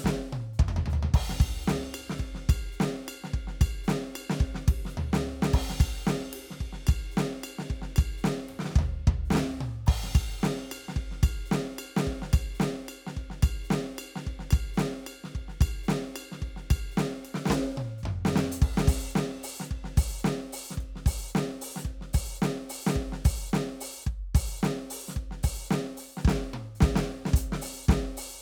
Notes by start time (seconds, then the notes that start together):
0.01 kick, snare, hi-hat pedal
0.06 snare
0.33 high tom
0.54 hi-hat pedal
0.60 kick, mid tom
0.69 mid tom
0.77 floor tom
0.86 floor tom
0.90 floor tom, hi-hat pedal
1.03 floor tom
1.14 kick, crash
1.30 snare
1.40 kick, ride, floor tom
1.62 hi-hat pedal
1.68 snare
1.95 ride bell
2.10 snare
2.19 kick, ride
2.35 snare
2.49 kick, ride bell
2.72 hi-hat pedal
2.80 snare
3.08 ride bell
3.24 snare
3.34 kick
3.48 snare
3.61 kick, ride bell
3.84 hi-hat pedal
3.88 snare
4.16 ride bell
4.30 snare
4.40 kick
4.55 snare
4.68 kick, ride
4.86 snare
4.90 hi-hat pedal
4.97 floor tom
5.13 snare
5.43 snare
5.54 kick, crash
5.70 snare
5.80 kick, ride bell
6.03 hi-hat pedal
6.07 snare
6.33 ride
6.51 snare
6.61 kick
6.73 snare
6.87 kick, ride bell
7.12 hi-hat pedal
7.17 snare
7.44 ride bell
7.59 snare
7.70 kick
7.82 snare
7.96 kick, ride bell
8.18 hi-hat pedal
8.24 snare
8.49 ride, floor tom
8.59 snare
8.65 snare
8.69 snare
8.74 kick, snare
8.79 snare, floor tom
9.07 kick, floor tom
9.26 hi-hat pedal
9.31 snare
9.35 snare
9.61 high tom
9.87 kick, crash
10.04 snare
10.15 kick, ride bell
10.40 snare, hi-hat pedal
10.72 ride bell
10.89 snare
10.96 kick
11.11 snare
11.23 kick, ride bell
11.46 hi-hat pedal
11.52 snare
11.79 ride bell
11.97 snare
12.07 kick
12.22 snare
12.33 kick, ride bell
12.55 hi-hat pedal
12.60 snare
12.89 ride bell
13.07 snare
13.17 kick
13.30 snare
13.43 kick, ride bell
13.64 hi-hat pedal
13.71 snare
13.99 ride bell
14.16 snare
14.27 kick
14.40 snare
14.51 kick, ride bell
14.74 snare, hi-hat pedal
15.07 ride bell
15.24 snare
15.35 kick
15.49 snare
15.61 kick, ride bell
15.84 hi-hat pedal
15.89 snare
16.16 ride bell
16.32 snare
16.42 kick
16.57 snare
16.71 kick, ride bell
16.92 hi-hat pedal
16.98 snare
17.25 ride bell
17.35 snare
17.46 kick, snare
17.50 snare
17.78 high tom
17.98 hi-hat pedal
18.03 kick, mid tom
18.25 snare
18.36 snare
18.52 closed hi-hat
18.62 kick, crash
18.78 snare
18.88 open hi-hat, kick
19.11 hi-hat pedal
19.16 snare
19.44 open hi-hat
19.60 snare
19.65 closed hi-hat, hi-hat pedal
19.71 kick
19.85 snare
19.97 open hi-hat, kick
20.21 hi-hat pedal
20.25 snare
20.53 open hi-hat
20.71 snare, hi-hat pedal
20.78 kick, closed hi-hat
20.96 snare
21.06 open hi-hat, kick
21.30 hi-hat pedal
21.35 snare
21.62 open hi-hat
21.76 snare
21.82 kick, hi-hat pedal
21.87 closed hi-hat
22.01 snare
22.14 open hi-hat, kick
22.37 hi-hat pedal
22.42 snare
22.70 open hi-hat
22.87 snare
22.92 kick, hi-hat pedal
23.13 snare
23.25 open hi-hat, kick
23.49 hi-hat pedal
23.54 snare
23.81 open hi-hat
24.03 kick, closed hi-hat, hi-hat pedal
24.35 open hi-hat, kick
24.60 snare, hi-hat pedal
24.91 open hi-hat
25.09 snare
25.14 kick, hi-hat pedal
25.31 snare
25.43 open hi-hat, kick
25.67 snare, hi-hat pedal
25.97 open hi-hat
26.17 snare, hi-hat pedal
26.25 kick, snare
26.54 high tom
26.75 hi-hat pedal
26.81 kick, snare
26.96 snare
27.26 snare
27.34 closed hi-hat, kick
27.52 snare
27.62 open hi-hat
27.85 kick, hi-hat pedal
27.90 snare
28.17 open hi-hat